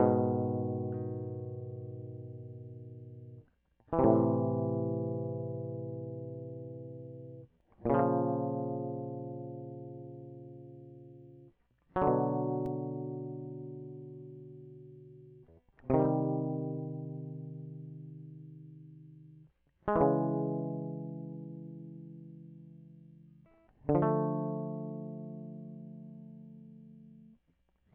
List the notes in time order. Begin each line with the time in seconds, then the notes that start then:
0.00 B2
0.05 D#3
3.93 E3
3.99 C3
4.05 A2
7.86 A#2 C#3
7.94 F3
7.99 A3
11.96 F#3
12.02 D3
12.08 B2
15.90 C3 D#3
15.99 G3
16.06 C4
19.88 G#3
19.96 E3
20.01 C#3
23.89 D3
23.95 F3
24.02 A3